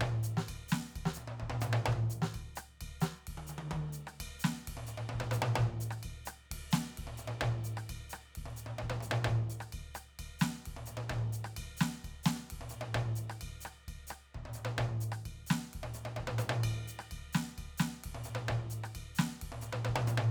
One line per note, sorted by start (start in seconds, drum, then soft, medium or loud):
0.01 kick soft
0.01 mid tom loud
0.10 mid tom soft
0.23 hi-hat pedal medium
0.37 snare medium
0.49 kick soft
0.49 ride bell medium
0.69 snare medium
0.69 hi-hat pedal medium
0.89 hi-hat pedal soft
0.96 kick soft
0.96 ride bell medium
1.06 snare medium
1.14 hi-hat pedal medium
1.14 mid tom medium
1.28 mid tom medium
1.40 kick soft
1.40 mid tom medium
1.48 kick soft
1.61 hi-hat pedal medium
1.61 mid tom loud
1.73 mid tom loud
1.86 kick soft
1.86 mid tom loud
1.93 kick soft
1.93 mid tom soft
2.10 hi-hat pedal medium
2.22 snare medium
2.34 kick soft
2.34 ride bell medium
2.56 cross-stick medium
2.56 hi-hat pedal medium
2.81 kick soft
2.81 ride bell medium
3.01 snare medium
3.01 hi-hat pedal medium
3.27 kick soft
3.27 ride medium
3.34 kick soft
3.34 high tom medium
3.47 hi-hat pedal medium
3.47 high tom medium
3.58 high tom medium
3.71 kick soft
3.71 high tom loud
3.93 hi-hat pedal medium
4.07 cross-stick medium
4.20 kick soft
4.20 ride bell loud
4.40 hi-hat pedal medium
4.44 snare loud
4.68 kick soft
4.68 ride medium
4.77 mid tom medium
4.87 hi-hat pedal medium
4.87 mid tom soft
4.98 mid tom medium
5.09 mid tom medium
5.15 kick soft
5.20 kick soft
5.20 mid tom loud
5.31 hi-hat pedal medium
5.31 mid tom loud
5.42 mid tom loud
5.56 kick soft
5.56 mid tom loud
5.64 kick soft
5.64 mid tom soft
5.80 hi-hat pedal medium
5.91 cross-stick medium
6.03 kick soft
6.03 ride bell medium
6.26 cross-stick medium
6.26 hi-hat pedal medium
6.51 kick soft
6.51 ride loud
6.71 snare loud
6.71 hi-hat pedal medium
6.98 kick soft
6.98 ride medium
7.04 kick soft
7.04 mid tom medium
7.17 hi-hat pedal medium
7.17 mid tom medium
7.28 mid tom medium
7.41 kick soft
7.41 mid tom loud
7.64 hi-hat pedal medium
7.77 cross-stick medium
7.90 kick soft
7.90 ride bell medium
7.96 kick soft
8.10 cross-stick medium
8.10 hi-hat pedal medium
8.35 kick soft
8.35 ride medium
8.46 mid tom medium
8.51 ride soft
8.57 hi-hat pedal medium
8.66 mid tom medium
8.79 mid tom medium
8.83 kick soft
8.89 kick soft
8.89 mid tom loud
9.01 hi-hat pedal medium
9.01 mid tom medium
9.11 mid tom loud
9.25 kick soft
9.25 mid tom loud
9.50 hi-hat pedal medium
9.61 cross-stick medium
9.73 kick soft
9.73 ride bell medium
9.95 cross-stick medium
9.95 hi-hat pedal medium
10.19 kick soft
10.19 ride bell medium
10.25 kick soft
10.39 snare loud
10.39 hi-hat pedal medium
10.66 kick soft
10.66 ride medium
10.77 mid tom medium
10.86 hi-hat pedal medium
10.86 mid tom soft
10.97 mid tom medium
11.10 kick soft
11.10 mid tom loud
11.19 mid tom soft
11.33 hi-hat pedal medium
11.45 cross-stick medium
11.57 kick soft
11.57 ride bell medium
11.77 snare loud
11.77 hi-hat pedal medium
12.04 kick soft
12.04 ride bell medium
12.23 snare loud
12.23 hi-hat pedal medium
12.33 snare soft
12.50 kick soft
12.50 ride medium
12.58 kick soft
12.58 mid tom medium
12.69 hi-hat pedal medium
12.69 mid tom medium
12.81 mid tom medium
12.95 kick soft
12.95 mid tom loud
13.16 hi-hat pedal medium
13.30 cross-stick medium
13.41 kick soft
13.41 ride bell medium
13.61 hi-hat pedal medium
13.65 cross-stick medium
13.88 kick soft
13.88 ride bell medium
14.07 cross-stick medium
14.07 hi-hat pedal medium
14.35 kick soft
14.35 mid tom medium
14.45 mid tom medium
14.53 hi-hat pedal medium
14.65 mid tom medium
14.78 kick soft
14.78 mid tom loud
14.86 mid tom soft
15.01 hi-hat pedal medium
15.12 cross-stick medium
15.26 kick soft
15.26 ride bell medium
15.47 snare loud
15.47 hi-hat pedal medium
15.73 kick soft
15.73 ride medium
15.81 kick soft
15.81 mid tom medium
15.94 hi-hat pedal medium
15.94 mid tom soft
16.05 mid tom medium
16.17 kick soft
16.17 mid tom medium
16.27 mid tom loud
16.39 hi-hat pedal medium
16.39 mid tom medium
16.50 mid tom loud
16.64 kick soft
16.64 ride bell loud
16.88 hi-hat pedal medium
16.99 cross-stick medium
17.11 kick soft
17.11 ride bell medium
17.33 snare medium
17.33 hi-hat pedal medium
17.58 kick soft
17.58 ride bell medium
17.78 snare medium
17.78 hi-hat pedal medium
18.04 kick soft
18.04 ride medium
18.15 mid tom medium
18.24 hi-hat pedal medium
18.24 mid tom medium
18.35 mid tom medium
18.49 kick soft
18.49 mid tom loud
18.70 hi-hat pedal medium
18.84 cross-stick medium
18.95 kick soft
18.95 ride bell medium
19.15 snare loud
19.15 hi-hat pedal medium
19.42 kick soft
19.42 ride medium
19.52 mid tom medium
19.61 hi-hat pedal medium
19.61 mid tom medium
19.73 mid tom loud
19.85 mid tom loud
19.89 kick soft
19.96 mid tom loud
20.07 hi-hat pedal medium
20.07 mid tom loud
20.18 mid tom loud